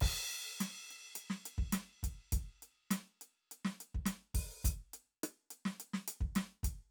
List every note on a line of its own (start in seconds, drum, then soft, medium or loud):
0.01 kick medium
0.01 crash loud
0.31 closed hi-hat soft
0.61 snare medium
0.61 closed hi-hat medium
0.91 closed hi-hat soft
1.16 closed hi-hat medium
1.30 snare medium
1.46 closed hi-hat medium
1.58 kick medium
1.73 snare medium
1.73 closed hi-hat loud
2.03 kick medium
2.03 closed hi-hat medium
2.32 kick medium
2.32 closed hi-hat loud
2.63 closed hi-hat medium
2.91 snare medium
2.91 closed hi-hat loud
3.21 closed hi-hat medium
3.52 closed hi-hat medium
3.65 snare medium
3.81 closed hi-hat medium
3.95 kick medium
4.06 snare medium
4.06 closed hi-hat loud
4.35 kick medium
4.35 open hi-hat loud
4.65 kick medium
4.65 hi-hat pedal loud
4.65 open hi-hat loud
4.94 closed hi-hat medium
5.24 cross-stick medium
5.24 closed hi-hat loud
5.51 closed hi-hat medium
5.65 snare medium
5.80 closed hi-hat medium
5.94 snare medium
6.08 closed hi-hat loud
6.21 kick medium
6.36 snare loud
6.36 closed hi-hat medium
6.63 kick medium
6.63 closed hi-hat loud